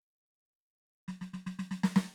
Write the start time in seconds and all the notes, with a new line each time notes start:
1.08 snare
1.22 snare
1.34 snare
1.47 snare
1.59 snare
1.71 snare
1.84 snare
1.96 snare